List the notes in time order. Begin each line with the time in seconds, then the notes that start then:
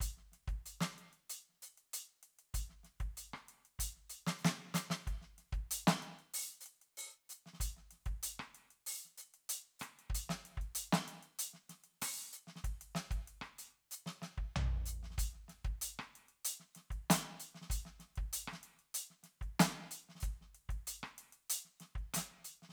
0.01 closed hi-hat, kick
0.18 snare
0.33 snare, closed hi-hat
0.48 kick, closed hi-hat
0.66 closed hi-hat
0.81 snare
0.99 closed hi-hat
1.14 closed hi-hat
1.30 open hi-hat
1.50 snare
1.53 snare
1.63 closed hi-hat, hi-hat pedal
1.78 closed hi-hat
1.94 closed hi-hat
2.24 closed hi-hat
2.39 closed hi-hat
2.55 closed hi-hat, kick
2.70 snare
2.84 snare, closed hi-hat
3.01 kick, closed hi-hat
3.18 closed hi-hat
3.34 cross-stick
3.49 closed hi-hat
3.66 closed hi-hat
3.80 closed hi-hat, kick
3.96 snare
4.10 open hi-hat
4.27 snare
4.39 hi-hat pedal
4.45 snare
4.75 snare, hi-hat pedal
4.91 snare
5.08 kick, closed hi-hat
5.22 snare
5.38 snare, closed hi-hat
5.53 kick, closed hi-hat
5.72 closed hi-hat
5.88 snare
6.03 closed hi-hat
6.19 closed hi-hat
6.34 open hi-hat
6.61 hi-hat pedal
6.67 closed hi-hat
6.82 closed hi-hat
6.98 open hi-hat
7.30 hi-hat pedal
7.47 snare
7.54 snare
7.61 closed hi-hat, kick
7.77 snare
7.91 snare, closed hi-hat
8.06 kick, closed hi-hat
8.24 closed hi-hat
8.40 cross-stick
8.55 closed hi-hat
8.71 closed hi-hat
8.87 open hi-hat
9.06 snare
9.09 snare
9.18 hi-hat pedal
9.35 closed hi-hat
9.50 open hi-hat
9.80 cross-stick, closed hi-hat, hi-hat pedal
10.00 closed hi-hat
10.11 kick
10.15 closed hi-hat
10.30 snare
10.46 closed hi-hat
10.58 kick
10.62 closed hi-hat
10.76 closed hi-hat
10.93 snare
11.09 closed hi-hat
11.23 closed hi-hat
11.40 closed hi-hat
11.54 snare
11.70 snare, closed hi-hat
11.84 closed hi-hat
12.02 open hi-hat, cross-stick
12.33 open hi-hat, hi-hat pedal
12.48 snare
12.56 snare
12.65 kick, closed hi-hat
12.82 closed hi-hat
12.96 snare
13.11 kick, closed hi-hat
13.28 closed hi-hat
13.42 cross-stick
13.47 cross-stick
13.59 closed hi-hat
13.92 hi-hat pedal
14.07 snare
14.23 snare
14.38 kick
14.57 floor tom
14.86 closed hi-hat, hi-hat pedal
15.04 snare
15.11 snare
15.19 closed hi-hat, kick
15.34 snare
15.49 snare, closed hi-hat
15.65 kick, closed hi-hat
15.82 closed hi-hat
16.00 cross-stick
16.16 closed hi-hat
16.29 closed hi-hat
16.46 closed hi-hat
16.60 snare
16.76 snare, closed hi-hat
16.91 kick, closed hi-hat
17.11 open hi-hat, snare
17.19 snare
17.41 open hi-hat
17.55 snare
17.62 snare
17.66 snare
17.71 closed hi-hat, kick
17.86 snare
18.00 snare, closed hi-hat
18.16 kick, closed hi-hat
18.34 closed hi-hat
18.48 cross-stick
18.53 snare
18.64 closed hi-hat
18.80 closed hi-hat
18.95 closed hi-hat
19.11 snare
19.24 snare, closed hi-hat
19.42 kick, closed hi-hat
19.60 open hi-hat, snare
19.92 open hi-hat
20.09 snare
20.16 snare
20.20 kick, snare, hi-hat pedal
20.24 closed hi-hat
20.42 snare
20.55 closed hi-hat
20.70 kick, closed hi-hat
20.88 closed hi-hat
21.04 cross-stick
21.19 closed hi-hat
21.33 closed hi-hat
21.51 closed hi-hat
21.65 snare
21.81 snare, closed hi-hat
21.96 kick, closed hi-hat
22.14 open hi-hat, cross-stick, snare
22.45 open hi-hat
22.63 snare
22.70 snare